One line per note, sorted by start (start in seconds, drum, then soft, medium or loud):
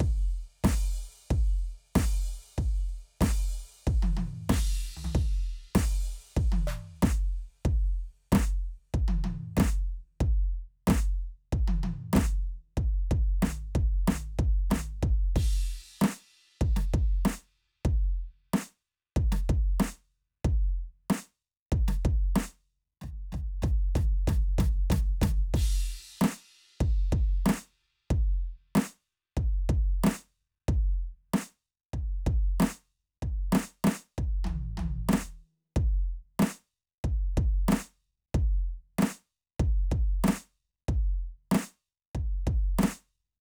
0.01 kick loud
0.65 open hi-hat loud
0.65 kick loud
0.65 snare loud
1.31 kick loud
1.96 open hi-hat loud
1.96 kick loud
1.96 snare loud
2.59 kick loud
3.22 open hi-hat loud
3.22 kick loud
3.22 snare loud
3.88 kick loud
4.03 high tom loud
4.18 high tom loud
4.50 kick loud
4.50 snare loud
4.50 crash loud
4.97 floor tom medium
5.05 floor tom loud
5.16 kick loud
5.76 open hi-hat loud
5.76 kick loud
5.76 snare loud
5.92 snare soft
6.37 kick loud
6.53 high tom loud
6.68 percussion loud
7.03 kick loud
7.03 snare loud
7.66 kick loud
8.33 kick loud
8.33 snare loud
8.36 snare loud
8.95 kick loud
9.09 high tom loud
9.25 high tom loud
9.58 kick loud
9.58 snare loud
9.61 snare loud
10.21 kick loud
10.88 kick loud
10.88 snare loud
10.91 snare loud
11.53 kick loud
11.68 high tom loud
11.84 high tom loud
12.14 kick loud
12.14 snare loud
12.17 snare loud
12.78 kick loud
13.12 kick loud
13.43 snare loud
13.43 floor tom loud
13.76 kick loud
14.08 snare loud
14.08 floor tom loud
14.39 kick loud
14.71 snare loud
14.71 floor tom loud
15.03 kick loud
15.37 kick loud
15.37 crash loud
16.02 snare loud
16.05 snare loud
16.62 kick loud
16.77 snare medium
16.94 kick loud
17.26 snare loud
17.86 kick loud
18.54 snare loud
19.17 kick loud
19.33 snare loud
19.50 kick loud
19.81 snare loud
20.45 kick loud
21.11 snare loud
21.73 kick loud
21.89 snare medium
22.06 kick loud
22.36 snare loud
23.02 kick soft
23.02 snare soft
23.02 floor tom soft
23.33 kick medium
23.33 snare soft
23.33 floor tom medium
23.63 kick loud
23.63 snare medium
23.63 floor tom medium
23.96 kick loud
23.96 snare medium
23.96 floor tom medium
24.28 kick loud
24.28 snare medium
24.28 floor tom medium
24.59 kick loud
24.59 snare loud
24.59 floor tom medium
24.91 kick loud
24.91 snare loud
24.91 floor tom loud
25.22 kick loud
25.22 snare loud
25.22 floor tom loud
25.55 kick loud
25.55 crash loud
26.22 snare loud
26.25 snare loud
26.81 kick loud
27.13 kick loud
27.47 snare loud
27.50 snare loud
28.11 kick loud
28.76 snare loud
28.78 snare loud
29.38 kick loud
29.70 kick loud
30.04 snare loud
30.07 snare loud
30.69 kick loud
31.34 snare loud
31.94 kick medium
32.27 kick loud
32.61 snare loud
32.63 snare loud
33.23 kick medium
33.53 snare loud
33.56 snare loud
33.85 snare loud
33.88 snare loud
34.19 kick loud
34.45 floor tom loud
34.45 high tom loud
34.78 floor tom loud
34.78 high tom loud
35.10 snare loud
35.14 snare loud
35.77 kick loud
36.40 snare loud
36.43 snare loud
37.05 kick loud
37.38 kick loud
37.69 snare loud
37.73 snare loud
38.35 kick loud
38.99 snare loud
39.03 snare loud
39.60 kick loud
39.92 kick loud
40.25 snare loud
40.29 snare loud
40.89 kick loud
41.52 snare loud
41.55 snare loud
42.16 kick medium
42.48 kick loud
42.79 snare loud
42.84 snare loud